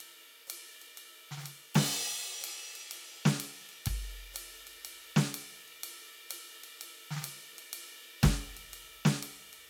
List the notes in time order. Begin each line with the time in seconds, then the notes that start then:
0.01 ride
0.48 hi-hat pedal, ride
0.82 ride
0.98 ride
1.32 snare
1.38 snare, hi-hat pedal
1.44 snare, ride
1.75 snare, crash
2.41 hi-hat pedal, ride
2.76 ride
2.92 ride
3.26 snare, hi-hat pedal
3.41 ride
3.70 ride
3.86 kick, ride
4.34 hi-hat pedal, ride
4.68 ride
4.86 ride
5.17 snare
5.23 hi-hat pedal
5.35 ride
5.69 ride
5.84 ride
6.30 hi-hat pedal, ride
6.64 ride
6.82 ride
7.11 snare
7.17 snare
7.22 snare, hi-hat pedal, ride
7.59 ride
7.74 ride
8.21 kick, snare, hi-hat pedal, ride
8.57 ride
8.74 ride
9.06 snare
9.23 ride
9.54 ride